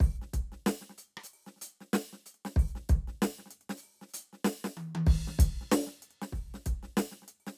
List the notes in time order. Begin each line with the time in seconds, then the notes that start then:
0.01 kick, open hi-hat
0.16 hi-hat pedal
0.22 snare
0.34 kick, closed hi-hat
0.53 snare
0.67 snare, hi-hat pedal
0.82 snare
0.90 snare
0.99 closed hi-hat
1.09 closed hi-hat
1.18 cross-stick
1.24 hi-hat pedal
1.34 open hi-hat
1.47 snare
1.57 snare, hi-hat pedal
1.62 closed hi-hat
1.81 snare
1.94 snare
2.13 snare
2.27 closed hi-hat
2.35 closed hi-hat
2.46 snare
2.57 kick, open hi-hat
2.69 hi-hat pedal
2.76 snare
2.90 kick, closed hi-hat
3.08 snare
3.23 snare
3.39 snare
3.47 snare
3.51 closed hi-hat
3.62 open hi-hat
3.70 snare
3.78 hi-hat pedal
3.84 open hi-hat
4.02 snare
4.09 hi-hat pedal
4.14 closed hi-hat
4.34 snare
4.45 snare
4.65 snare
4.78 hi-hat pedal, high tom
4.96 high tom
5.07 kick, crash
5.28 snare
5.40 kick, closed hi-hat
5.62 snare
5.72 snare, hi-hat pedal
5.87 snare
5.95 hi-hat pedal
6.03 closed hi-hat
6.11 closed hi-hat
6.23 snare
6.33 kick, open hi-hat
6.55 snare
6.67 kick, closed hi-hat
6.84 snare
6.98 snare, hi-hat pedal
7.12 snare
7.23 snare
7.29 closed hi-hat
7.41 open hi-hat
7.48 snare